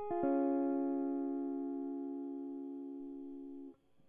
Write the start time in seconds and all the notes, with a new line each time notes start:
0.00 G#4
0.11 F4
0.21 C#4